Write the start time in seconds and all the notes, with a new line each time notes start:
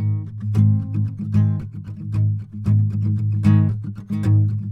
0.01 G#2 D#3
0.28 G#2
0.43 G#2
0.56 G#2 D#3 G#3 C4
0.81 G#2
0.96 G#2 D#3
1.07 G2 D3
1.20 D#3 G#3
1.35 G#2 D#3 G#3 C4
1.44 G#2
1.61 G2 D3
1.73 G2 D#3
1.88 G2 D#3
1.98 D#3 G#3
2.03 G#2
2.15 G#2 D#3 G#3
2.40 G2
2.67 G#2 D#3 G#3
2.77 G#2
2.92 G#2 D#3
3.04 G#2 D#3 G#3
3.19 G#2 D#3
3.35 D#3
3.45 G#2 D#3 G#3
3.56 G#2
4.11 D#3 G#3
4.25 G#2 D#3 G#3
4.50 G2